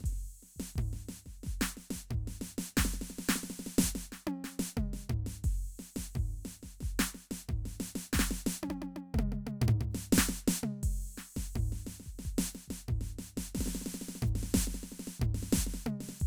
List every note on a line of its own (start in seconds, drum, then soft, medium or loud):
0.01 kick soft
0.01 snare soft
0.06 snare soft
0.06 crash medium
0.12 snare soft
0.39 snare soft
0.39 hi-hat pedal soft
0.56 kick soft
0.56 snare medium
0.76 kick soft
0.76 floor tom medium
0.93 snare soft
1.09 snare soft
1.09 hi-hat pedal soft
1.26 kick soft
1.26 snare soft
1.43 kick soft
1.43 snare soft
1.61 snare medium
1.77 snare soft
1.77 hi-hat pedal soft
1.91 kick soft
1.91 snare medium
2.11 kick soft
2.11 floor tom medium
2.28 snare soft
2.41 snare medium
2.41 hi-hat pedal soft
2.58 snare medium
2.77 kick medium
2.77 snare loud
2.85 kick soft
2.85 snare medium
2.94 snare soft
3.01 snare soft
3.10 snare soft
3.19 snare medium
3.29 snare loud
3.36 snare medium
3.43 snare soft
3.50 snare soft
3.59 snare soft
3.66 snare soft
3.78 snare loud
3.83 kick soft
3.88 kick soft
3.95 snare medium
4.12 snare soft
4.27 high tom loud
4.44 snare soft
4.59 snare medium
4.77 kick soft
4.77 mid tom loud
4.93 snare soft
5.10 kick soft
5.10 floor tom loud
5.26 snare soft
5.44 kick medium
5.44 snare soft
5.44 crash medium
5.79 snare soft
5.79 hi-hat pedal soft
5.96 kick soft
5.96 snare medium
6.15 kick soft
6.15 floor tom medium
6.45 snare soft
6.45 hi-hat pedal soft
6.63 kick soft
6.63 snare soft
6.81 kick soft
6.81 snare soft
6.99 snare loud
7.13 snare soft
7.13 hi-hat pedal soft
7.31 kick soft
7.31 snare medium
7.49 kick soft
7.49 floor tom medium
7.65 snare soft
7.80 snare medium
7.80 hi-hat pedal soft
7.96 snare medium
8.13 kick medium
8.13 snare medium
8.19 snare loud
8.24 kick soft
8.31 snare medium
8.46 snare medium
8.63 high tom loud
8.68 kick soft
8.68 high tom loud
8.82 high tom medium
8.96 high tom medium
9.14 kick medium
9.14 mid tom loud
9.19 mid tom loud
9.32 mid tom medium
9.47 mid tom medium
9.62 floor tom loud
9.68 floor tom loud
9.81 floor tom medium
9.90 hi-hat pedal soft
9.95 snare medium
10.13 snare loud
10.17 kick soft
10.17 snare loud
10.29 snare medium
10.48 snare loud
10.63 mid tom loud
10.83 kick medium
10.83 crash loud
11.18 snare soft
11.37 kick soft
11.37 snare medium
11.56 kick soft
11.56 floor tom loud
11.72 snare soft
11.87 snare soft
11.87 hi-hat pedal soft
12.00 snare soft
12.06 kick soft
12.19 snare soft
12.25 kick soft
12.38 snare loud
12.52 snare soft
12.52 hi-hat pedal soft
12.68 kick soft
12.68 snare medium
12.88 kick soft
12.88 floor tom medium
13.01 snare soft
13.19 snare soft
13.19 hi-hat pedal soft
13.37 kick soft
13.37 snare medium
13.55 kick soft
13.55 snare medium
13.61 snare medium
13.66 snare soft
13.68 snare medium
13.75 snare medium
13.81 snare soft
13.86 snare medium
13.94 snare soft
14.01 snare soft
14.09 snare soft
14.15 snare soft
14.22 kick soft
14.22 floor tom loud
14.22 hi-hat pedal soft
14.33 kick soft
14.33 snare soft
14.43 snare soft
14.54 kick soft
14.54 snare loud
14.54 hi-hat pedal soft
14.64 kick soft
14.64 snare soft
14.74 snare soft
14.83 snare soft
14.92 snare soft
14.99 snare soft
15.07 snare soft
15.20 kick soft
15.20 floor tom loud
15.35 snare soft
15.43 snare soft
15.53 kick soft
15.53 snare loud
15.63 kick soft
15.63 snare soft
15.74 snare soft
15.86 mid tom loud
16.01 snare soft
16.09 snare soft
16.20 kick medium
16.20 crash medium